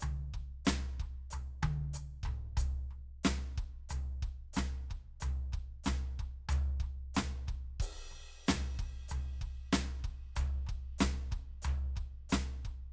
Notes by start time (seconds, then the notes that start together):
0.01 floor tom, hi-hat pedal, high tom
0.34 kick, floor tom
0.65 snare, floor tom, hi-hat pedal
1.00 kick, floor tom
1.31 floor tom, hi-hat pedal
1.63 kick, floor tom, high tom
1.94 floor tom, hi-hat pedal
2.24 kick, floor tom, mid tom
2.58 kick, floor tom, hi-hat pedal
2.91 floor tom
3.24 snare, floor tom, hi-hat pedal
3.58 kick, floor tom
3.90 floor tom, hi-hat pedal
4.23 kick, floor tom
4.54 snare, floor tom, hi-hat pedal
4.91 kick, floor tom
5.21 floor tom, hi-hat pedal
5.53 kick, floor tom
5.84 snare, floor tom, hi-hat pedal
6.20 kick, floor tom
6.49 floor tom, hi-hat pedal
6.81 kick, floor tom
7.15 snare, hi-hat pedal, floor tom
7.48 kick, floor tom
7.80 kick, hi-hat pedal, crash
8.12 floor tom
8.48 snare, hi-hat pedal, floor tom
8.79 kick, floor tom
9.09 floor tom, hi-hat pedal
9.42 kick, floor tom
9.73 snare, floor tom, hi-hat pedal
10.04 kick, floor tom
10.36 kick, floor tom, hi-hat pedal
10.67 kick, floor tom
10.99 snare, floor tom, hi-hat pedal
11.32 kick, floor tom
11.62 floor tom, hi-hat pedal
11.96 kick, floor tom
12.30 snare, floor tom, hi-hat pedal
12.65 kick, floor tom